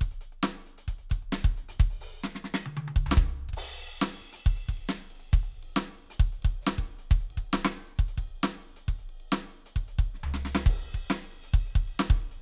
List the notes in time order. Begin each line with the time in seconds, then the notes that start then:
0.01 closed hi-hat, kick
0.12 closed hi-hat
0.21 closed hi-hat
0.33 closed hi-hat
0.44 snare
0.56 closed hi-hat
0.67 closed hi-hat
0.79 closed hi-hat
0.89 closed hi-hat, kick
0.99 closed hi-hat
1.10 closed hi-hat, kick
1.23 closed hi-hat
1.33 snare
1.45 kick, closed hi-hat
1.58 closed hi-hat
1.69 closed hi-hat
1.80 closed hi-hat, kick
1.91 open hi-hat
2.02 open hi-hat
2.21 snare, hi-hat pedal
2.36 snare
2.45 snare
2.55 snare
2.66 high tom
2.77 high tom
2.89 high tom
2.97 kick
3.07 floor tom
3.12 snare
3.18 kick
3.26 hi-hat pedal
3.49 kick
3.54 kick, crash
3.80 ride
3.99 snare, hi-hat pedal
4.22 kick, ride
4.33 closed hi-hat
4.45 kick, ride
4.57 closed hi-hat
4.67 kick, ride
4.78 ride
4.89 snare
5.00 ride
5.11 ride
5.20 closed hi-hat
5.33 kick, ride
5.44 closed hi-hat
5.53 ride
5.64 ride
5.77 snare
5.99 ride
6.11 closed hi-hat
6.20 kick, ride
6.33 closed hi-hat
6.43 kick, ride
6.63 hi-hat pedal
6.67 snare, ride
6.79 kick
6.89 ride
6.99 closed hi-hat
7.11 kick, ride
7.21 closed hi-hat
7.31 ride
7.38 kick
7.54 snare
7.65 snare
7.75 ride
7.87 closed hi-hat
7.99 kick, ride
8.09 closed hi-hat
8.18 kick, ride
8.36 ride
8.44 snare
8.55 ride
8.66 ride
8.77 closed hi-hat
8.89 kick, ride
8.99 closed hi-hat
9.10 ride
9.21 ride
9.33 snare
9.44 ride
9.55 ride
9.67 closed hi-hat
9.77 kick, ride
9.89 closed hi-hat
9.99 kick, ride
10.15 snare
10.20 hi-hat pedal
10.24 floor tom
10.35 snare
10.46 snare
10.55 snare
10.67 kick, crash
10.77 closed hi-hat
10.89 ride
10.95 kick
11.01 ride
11.11 snare
11.22 ride
11.33 ride
11.44 closed hi-hat
11.54 kick, ride
11.66 closed hi-hat
11.76 kick, ride
11.89 ride
12.00 snare
12.10 kick, ride
12.22 ride
12.32 closed hi-hat